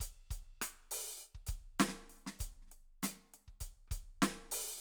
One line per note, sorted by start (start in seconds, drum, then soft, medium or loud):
0.01 closed hi-hat medium
0.01 kick soft
0.31 closed hi-hat medium
0.31 kick soft
0.62 closed hi-hat loud
0.62 cross-stick medium
0.92 open hi-hat loud
1.21 hi-hat pedal soft
1.21 open hi-hat soft
1.35 kick soft
1.47 closed hi-hat medium
1.47 kick soft
1.80 closed hi-hat medium
1.80 snare loud
1.89 snare soft
2.10 open hi-hat soft
2.27 snare medium
2.40 closed hi-hat medium
2.40 kick soft
2.40 hi-hat pedal soft
2.62 snare soft
2.67 snare soft
2.72 closed hi-hat soft
3.03 open hi-hat loud
3.03 snare medium
3.03 hi-hat pedal soft
3.35 closed hi-hat soft
3.48 kick soft
3.61 closed hi-hat medium
3.61 kick soft
3.89 closed hi-hat medium
3.89 kick soft
3.89 cross-stick soft
4.23 closed hi-hat medium
4.23 snare loud
4.52 open hi-hat loud